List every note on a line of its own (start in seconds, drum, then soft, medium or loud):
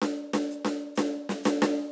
0.02 snare loud
0.33 snare loud
0.51 hi-hat pedal medium
0.65 snare loud
0.95 snare loud
0.95 hi-hat pedal medium
1.16 hi-hat pedal soft
1.29 snare loud
1.43 snare loud
1.43 hi-hat pedal medium
1.62 snare loud